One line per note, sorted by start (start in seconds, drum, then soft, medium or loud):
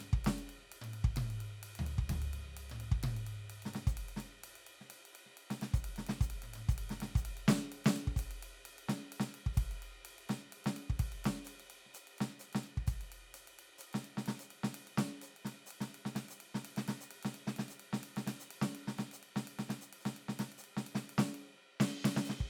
0.01 ride medium
0.13 kick medium
0.25 snare medium
0.25 ride medium
0.39 ride soft
0.49 ride medium
0.72 ride medium
0.82 high tom medium
0.82 ride medium
0.94 ride medium
1.04 kick medium
1.16 high tom loud
1.16 ride medium
1.30 ride soft
1.41 ride medium
1.63 ride medium
1.76 floor tom medium
1.76 ride medium
1.87 ride medium
1.98 kick medium
2.10 floor tom medium
2.10 ride medium
2.22 ride medium
2.33 ride medium
2.57 ride medium
2.70 high tom medium
2.70 ride soft
2.80 ride medium
2.92 kick medium
3.03 high tom loud
3.03 ride medium
3.17 ride soft
3.27 ride medium
3.50 ride medium
3.62 snare soft
3.62 ride medium
3.74 snare medium
3.74 ride medium
3.87 kick medium
3.87 hi-hat pedal medium
3.97 ride medium
4.09 ride medium
4.17 snare soft
4.17 ride medium
4.44 ride medium
4.56 ride medium
4.67 ride medium
4.81 snare soft
4.89 snare soft
4.89 ride medium
5.06 ride medium
5.15 ride medium
5.26 snare soft
5.37 ride medium
5.50 snare medium
5.50 ride medium
5.62 snare medium
5.62 ride medium
5.74 kick medium
5.74 hi-hat pedal medium
5.85 ride medium
5.96 snare soft
5.96 ride medium
6.07 snare medium
6.07 ride medium
6.21 kick medium
6.21 hi-hat pedal medium
6.30 ride medium
6.42 high tom soft
6.42 ride medium
6.54 high tom soft
6.54 ride medium
6.69 kick medium
6.69 hi-hat pedal medium
6.78 ride medium
6.90 snare soft
6.90 ride medium
7.01 snare medium
7.01 ride medium
7.16 kick medium
7.16 hi-hat pedal medium
7.25 ride medium
7.37 ride medium
7.48 snare loud
7.48 ride medium
7.72 ride medium
7.85 snare loud
7.85 ride medium
7.96 ride medium
8.07 kick soft
8.16 kick soft
8.16 hi-hat pedal medium
8.16 ride medium
8.31 ride medium
8.43 ride medium
8.66 ride medium
8.79 ride medium
8.89 snare medium
8.89 ride medium
9.12 ride medium
9.20 snare medium
9.20 ride medium
9.34 ride medium
9.46 kick medium
9.54 kick medium
9.54 hi-hat pedal soft
9.54 ride medium
9.71 ride soft
9.82 ride medium
10.05 ride medium
10.19 ride soft
10.29 snare medium
10.29 ride medium
10.53 ride medium
10.65 snare medium
10.65 ride soft
10.77 ride medium
10.90 kick medium
11.00 kick medium
11.00 ride medium
11.12 ride medium
11.25 snare medium
11.25 ride medium
11.45 hi-hat pedal medium
11.45 ride medium
11.60 ride soft
11.86 snare soft
11.94 hi-hat pedal medium
11.94 ride medium
12.07 ride soft
12.16 hi-hat pedal soft
12.16 ride soft
12.21 snare medium
12.40 hi-hat pedal medium
12.40 ride medium
12.53 snare medium
12.53 ride soft
12.64 ride soft
12.77 kick soft
12.87 kick medium
12.87 hi-hat pedal medium
12.87 ride medium
13.01 ride soft
13.12 ride medium
13.34 hi-hat pedal medium
13.34 ride medium
13.48 ride medium
13.59 ride medium
13.79 hi-hat pedal medium
13.79 ride medium
13.93 snare medium
13.93 ride soft
14.05 ride soft
14.17 snare medium
14.26 snare medium
14.26 ride medium
14.40 hi-hat pedal medium
14.40 ride medium
14.51 ride medium
14.64 snare medium
14.75 ride medium
14.87 ride soft
14.98 snare medium
14.98 ride medium
15.22 hi-hat pedal medium
15.22 ride medium
15.37 ride soft
15.45 snare soft
15.45 ride medium
15.66 hi-hat pedal medium
15.71 ride medium
15.81 snare medium
15.81 ride medium
15.95 ride medium
16.05 snare medium
16.16 ride medium
16.29 hi-hat pedal medium
16.29 ride soft
16.41 ride medium
16.55 snare medium
16.65 ride medium
16.77 snare medium
16.77 ride medium
16.88 snare medium
16.88 ride medium
17.01 hi-hat pedal medium
17.11 ride medium
17.23 snare medium
17.23 ride medium
17.35 ride medium
17.47 snare medium
17.57 snare medium
17.57 ride medium
17.69 hi-hat pedal medium
17.69 ride soft
17.80 ride medium
17.93 snare medium
18.03 ride medium
18.17 snare medium
18.17 ride medium
18.27 snare medium
18.27 ride medium
18.40 hi-hat pedal medium
18.51 ride medium
18.62 snare medium
18.62 ride soft
18.75 ride medium
18.88 snare medium
18.99 snare medium
18.99 ride soft
19.12 hi-hat pedal medium
19.12 ride soft
19.23 ride soft
19.34 snare medium
19.34 hi-hat pedal soft
19.48 ride medium
19.59 snare medium
19.59 ride soft
19.70 snare medium
19.70 ride medium
19.81 hi-hat pedal medium
19.93 ride medium
20.01 hi-hat pedal soft
20.06 snare medium
20.06 ride soft
20.17 ride medium
20.29 snare medium
20.39 snare medium
20.39 ride medium
20.52 ride soft
20.58 hi-hat pedal medium
20.64 ride medium
20.77 snare medium
20.87 ride medium
20.95 snare medium
20.95 ride soft
21.10 ride medium
21.18 snare loud
21.35 ride medium
21.80 snare loud
21.80 ride medium
22.05 snare medium
22.05 ride medium
22.17 snare medium
22.25 hi-hat pedal medium
22.29 snare medium
22.41 kick soft